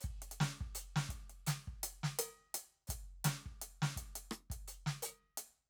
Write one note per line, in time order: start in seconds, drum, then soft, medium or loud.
0.01 kick medium
0.01 hi-hat pedal medium
0.22 closed hi-hat soft
0.31 closed hi-hat medium
0.40 snare medium
0.61 kick medium
0.75 closed hi-hat medium
0.96 snare medium
1.09 kick soft
1.09 closed hi-hat soft
1.30 closed hi-hat soft
1.47 closed hi-hat medium
1.47 snare medium
1.67 kick soft
1.83 closed hi-hat medium
2.03 snare medium
2.19 open hi-hat loud
2.54 open hi-hat medium
2.87 kick medium
2.87 closed hi-hat medium
2.87 hi-hat pedal soft
3.24 snare medium
3.24 closed hi-hat medium
3.46 kick soft
3.62 closed hi-hat medium
3.82 snare medium
3.96 kick soft
3.96 closed hi-hat medium
4.15 closed hi-hat medium
4.31 cross-stick medium
4.50 kick soft
4.50 closed hi-hat medium
4.68 closed hi-hat medium
4.86 snare medium
5.02 open hi-hat loud
5.37 open hi-hat medium